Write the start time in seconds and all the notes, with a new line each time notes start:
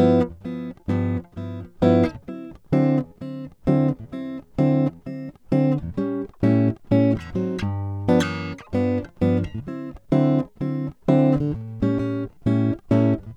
0.00 G2 F3 B3 E4
0.23 E2
0.43 G2 E4
0.48 F3 B3
0.91 G2 F3 B3 E4
1.39 G2 F3 B3 E4
1.62 B3
1.84 G2 F3 B3 E4
2.06 D3
2.30 F#3 C4 E4
2.75 D3 F#3 C4 E4
3.24 D3 F#3 C4 E4
3.69 D3 F#3 C4 E4
3.93 A2
4.12 D3 F#3 C4 E4
4.60 D3 G3 C4 E4
5.08 D3 F#3 C4 E4
5.54 D3 F#3 C4 E4
5.80 A2
5.85 E2
6.00 A2 G3 C#4
6.45 A2 G3 C#4 E4
6.93 A2 G3 C#4 E4
7.18 E2 D3
7.36 G#2 F#3 C4 D#4
7.62 G2
8.11 F3 B3 D4
8.22 G2 E3 A#3 C#4
8.75 G2 F3 B3 D4
9.24 G2 F3 B3 D4
9.46 D3
9.57 A#2
9.65 D3
9.69 F#3 C4 E4
10.14 D3 F#3 C4 E4
10.63 D3 F#3 C4 E4
11.11 D3 F#3 C4 E4
11.37 A2
11.43 E2 D3
11.57 A2
11.84 A2 G3 C#4 E4
11.99 A2 C#4 E4
12.49 A2 G3 C#4 E4
12.93 A2 G3 C#4 E4